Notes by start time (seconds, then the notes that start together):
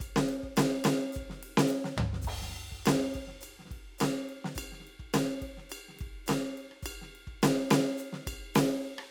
0.01 kick, hi-hat pedal, ride bell
0.07 kick
0.10 kick
0.17 snare
0.30 ride
0.44 kick
0.57 snare, hi-hat pedal, ride bell
0.85 snare, ride bell
1.13 kick, hi-hat pedal, ride
1.23 kick
1.26 kick
1.30 snare
1.38 kick
1.43 ride
1.58 snare
1.68 hi-hat pedal, ride
1.85 snare
1.97 kick, floor tom
2.14 snare
2.23 kick, hi-hat pedal
2.27 crash
2.32 kick
2.35 kick
2.42 snare
2.50 snare
2.57 ride
2.72 kick
2.86 snare, hi-hat pedal, ride bell
2.97 snare
3.15 kick, ride
3.28 snare
3.41 hi-hat pedal, ride bell
3.60 snare
3.66 snare
3.71 kick, ride
3.99 snare, hi-hat pedal, ride bell
4.30 ride
4.45 snare
4.56 kick, hi-hat pedal, ride bell
4.73 snare
4.80 snare
4.88 ride
5.00 kick
5.14 snare, hi-hat pedal, ride bell
5.24 snare
5.42 kick, ride
5.48 kick
5.58 snare
5.70 hi-hat pedal, ride bell
5.89 snare
5.96 snare, ride
6.01 kick
6.07 kick
6.11 kick
6.27 snare, hi-hat pedal, ride bell
6.41 cross-stick
6.58 ride
6.72 cross-stick
6.83 kick, hi-hat pedal, ride bell
6.89 kick
7.02 snare
7.16 ride
7.28 kick
7.43 snare, hi-hat pedal, ride bell
7.71 snare, ride bell
7.80 snare
7.98 hi-hat pedal, ride
8.13 snare
8.27 kick, ride bell
8.33 kick
8.37 kick
8.55 snare, hi-hat pedal, ride
8.86 ride
8.99 cross-stick